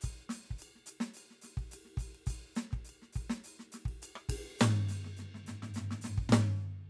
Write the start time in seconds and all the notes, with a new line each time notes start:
0.01 kick, hi-hat pedal, ride bell
0.29 snare, hi-hat pedal, ride bell
0.44 snare, ride
0.51 kick
0.58 hi-hat pedal, ride bell
0.75 snare
0.86 hi-hat pedal, ride
1.00 snare, ride
1.14 hi-hat pedal, ride bell
1.30 snare
1.42 snare, hi-hat pedal, ride
1.57 kick, ride
1.71 hi-hat pedal, ride
1.85 snare
1.97 kick, hi-hat pedal, ride
2.15 ride
2.26 kick, hi-hat pedal, ride, ride bell
2.55 snare, hi-hat pedal, ride bell
2.71 kick, snare, ride
2.85 hi-hat pedal
2.89 ride bell
3.02 snare
3.13 kick, hi-hat pedal
3.17 ride
3.30 snare, ride
3.44 cross-stick, hi-hat pedal, ride
3.59 snare
3.72 snare, hi-hat pedal, ride
3.85 kick, ride
4.02 hi-hat pedal, ride bell
4.15 cross-stick
4.29 kick, hi-hat pedal, ride
4.59 snare, floor tom, hi-hat pedal
4.89 snare, floor tom, hi-hat pedal
5.04 snare, floor tom
5.17 snare, floor tom, hi-hat pedal
5.34 snare, floor tom
5.46 snare, floor tom, hi-hat pedal
5.62 snare, floor tom
5.74 snare, floor tom, hi-hat pedal
5.91 snare, floor tom
6.01 snare, hi-hat pedal
6.06 floor tom
6.18 kick
6.29 snare, floor tom, hi-hat pedal